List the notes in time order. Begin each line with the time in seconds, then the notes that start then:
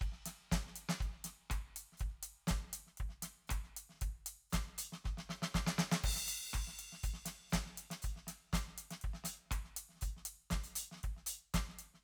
0.01 kick, closed hi-hat
0.12 snare
0.26 snare, closed hi-hat
0.52 kick, snare, closed hi-hat
0.67 snare
0.76 closed hi-hat
0.89 snare
1.00 kick, closed hi-hat
1.15 snare
1.24 snare, closed hi-hat
1.50 kick, cross-stick, closed hi-hat
1.76 open hi-hat
1.92 snare
1.97 kick, closed hi-hat, hi-hat pedal
2.08 snare
2.23 closed hi-hat
2.47 kick, snare, closed hi-hat
2.61 snare
2.73 closed hi-hat
2.87 snare
2.97 kick, closed hi-hat
3.09 snare
3.22 snare, open hi-hat
3.47 kick, cross-stick, closed hi-hat, hi-hat pedal
3.63 snare
3.77 closed hi-hat
3.89 snare
3.93 snare
3.96 snare
4.01 kick, closed hi-hat
4.26 open hi-hat
4.50 kick, snare, closed hi-hat, hi-hat pedal
4.67 snare
4.78 closed hi-hat
4.92 snare
5.04 kick, snare
5.17 snare
5.29 snare
5.42 snare
5.54 kick, snare
5.67 snare
5.78 snare
5.92 snare
6.04 kick, crash
6.16 snare
6.26 open hi-hat, snare
6.50 cross-stick, hi-hat pedal
6.54 kick, closed hi-hat
6.67 snare
6.79 closed hi-hat
6.92 snare
7.03 closed hi-hat, kick
7.13 snare
7.26 snare, open hi-hat
7.50 kick, snare, closed hi-hat, hi-hat pedal
7.66 snare
7.78 closed hi-hat
7.90 snare, closed hi-hat
8.02 closed hi-hat, kick
8.16 snare
8.27 snare, closed hi-hat
8.53 closed hi-hat, kick, snare
8.68 snare
8.78 closed hi-hat
8.91 snare, closed hi-hat
9.01 kick, closed hi-hat
9.14 snare
9.24 closed hi-hat, snare
9.51 kick, cross-stick, closed hi-hat
9.64 snare
9.77 closed hi-hat
9.89 snare
9.93 snare
9.95 snare
10.01 closed hi-hat, kick
10.17 snare
10.25 closed hi-hat
10.50 kick, snare, closed hi-hat
10.64 closed hi-hat, snare
10.76 open hi-hat
10.91 snare
10.95 snare
11.03 kick, closed hi-hat
11.17 snare
11.26 closed hi-hat
11.54 kick, snare, closed hi-hat
11.69 snare
11.79 closed hi-hat
11.94 snare